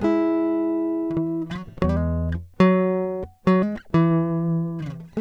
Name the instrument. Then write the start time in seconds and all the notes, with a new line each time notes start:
acoustic guitar
0.01 G#3
0.07 E4
1.18 E3
1.52 F#3
1.83 E2 F#3
2.61 F#3
3.48 F#3
3.64 G#3
3.95 E3